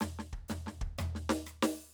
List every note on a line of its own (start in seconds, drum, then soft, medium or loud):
0.00 snare medium
0.00 floor tom medium
0.00 hi-hat pedal medium
0.19 snare soft
0.19 floor tom soft
0.33 kick soft
0.48 snare medium
0.48 floor tom medium
0.48 hi-hat pedal medium
0.66 snare soft
0.66 floor tom soft
0.81 kick medium
0.98 cross-stick medium
0.98 floor tom loud
0.98 hi-hat pedal medium
1.15 snare soft
1.29 snare loud
1.46 cross-stick medium
1.46 hi-hat pedal medium
1.62 open hi-hat medium
1.62 snare loud